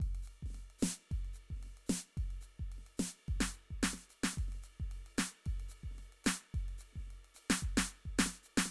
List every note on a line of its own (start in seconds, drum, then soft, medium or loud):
0.00 kick soft
0.00 ride medium
0.07 kick soft
0.11 kick soft
0.11 ride medium
0.22 hi-hat pedal soft
0.27 ride medium
0.43 kick soft
0.43 snare soft
0.50 snare soft
0.54 snare soft
0.54 ride medium
0.58 snare soft
0.70 ride soft
0.79 snare medium
0.79 hi-hat pedal medium
0.79 ride medium
1.10 kick soft
1.10 snare soft
1.10 ride soft
1.25 ride soft
1.33 hi-hat pedal soft
1.33 ride soft
1.50 kick soft
1.50 snare soft
1.56 snare soft
1.60 snare soft
1.62 snare soft
1.62 ride medium
1.64 snare soft
1.66 snare soft
1.77 ride soft
1.86 snare medium
1.86 hi-hat pedal medium
1.86 ride medium
2.17 kick soft
2.17 ride medium
2.24 kick soft
2.30 ride soft
2.41 hi-hat pedal medium
2.41 ride soft
2.59 kick soft
2.72 kick soft
2.72 ride medium
2.78 snare soft
2.86 ride soft
2.97 snare medium
2.97 hi-hat pedal medium
2.97 ride medium
3.28 kick soft
3.28 ride soft
3.36 kick soft
3.40 snare medium
3.51 hi-hat pedal medium
3.51 ride soft
3.71 kick soft
3.83 snare medium
3.83 ride medium
3.93 snare soft
3.98 ride soft
4.09 hi-hat pedal soft
4.09 ride medium
4.24 snare medium
4.33 snare soft
4.37 kick soft
4.37 ride medium
4.48 snare soft
4.48 ride soft
4.55 snare soft
4.62 hi-hat pedal medium
4.62 ride medium
4.80 kick soft
4.91 ride medium
5.06 ride medium
5.18 snare medium
5.18 hi-hat pedal medium
5.18 ride medium
5.46 kick soft
5.46 ride medium
5.54 kick soft
5.60 ride soft
5.69 hi-hat pedal medium
5.69 ride medium
5.84 kick soft
5.91 snare soft
5.95 snare soft
5.98 snare soft
5.98 ride soft
6.12 ride soft
6.24 snare medium
6.24 hi-hat pedal medium
6.24 ride medium
6.54 kick soft
6.54 snare soft
6.54 ride soft
6.68 ride soft
6.78 hi-hat pedal medium
6.78 ride medium
6.92 kick soft
6.92 snare soft
6.97 snare soft
7.00 snare soft
7.10 ride soft
7.25 ride soft
7.34 hi-hat pedal medium
7.34 ride medium
7.50 snare medium
7.62 kick soft
7.62 ride soft
7.77 snare medium
7.87 hi-hat pedal medium
7.91 ride soft
8.05 kick soft
8.19 snare loud
8.19 ride medium
8.26 snare soft
8.34 ride soft
8.43 hi-hat pedal medium
8.43 ride soft
8.57 snare medium
8.65 snare soft